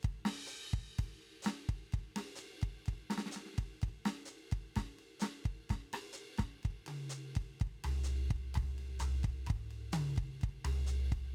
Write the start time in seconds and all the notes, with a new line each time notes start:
0.01 hi-hat pedal, ride
0.05 kick
0.26 snare, crash
0.47 hi-hat pedal
0.74 kick
0.79 kick
0.96 kick, hi-hat pedal, ride
1.05 kick
1.22 ride
1.43 snare, hi-hat pedal, ride
1.69 kick, ride
1.93 kick, ride
1.99 kick
2.17 snare, ride
2.36 hi-hat pedal, ride
2.62 kick, ride
2.87 kick, ride
2.94 kick
3.11 snare, ride
3.18 snare
3.26 snare
3.32 hi-hat pedal, ride
3.37 snare
3.46 snare
3.54 snare
3.59 kick, snare, ride
3.68 snare
3.72 snare
3.77 snare
3.80 kick, snare, ride
3.89 kick
4.06 snare, ride
4.26 hi-hat pedal, ride
4.52 kick, ride
4.76 kick, snare, ride
4.82 kick
4.99 ride
5.20 snare, hi-hat pedal, ride
5.45 kick, ride
5.70 kick, snare, ride
5.76 kick
5.94 cross-stick, ride
6.13 hi-hat pedal, ride
6.38 kick, snare, ride
6.45 kick
6.64 kick, ride
6.70 kick
6.87 high tom, ride
7.10 hi-hat pedal, ride
7.36 kick, ride
7.42 kick
7.61 kick, ride
7.67 kick
7.85 floor tom, ride
8.04 hi-hat pedal, ride
8.31 kick, ride
8.36 kick
8.55 kick, floor tom, ride
8.63 kick
8.79 ride
9.00 floor tom, hi-hat pedal, ride
9.24 kick, ride
9.30 kick
9.47 kick, mid tom, ride
9.56 kick
9.71 ride
9.93 hi-hat pedal, high tom, ride
10.17 kick, ride
10.23 kick
10.42 kick, ride
10.49 kick
10.65 floor tom, ride
10.87 hi-hat pedal, ride
11.10 kick, snare, ride
11.18 kick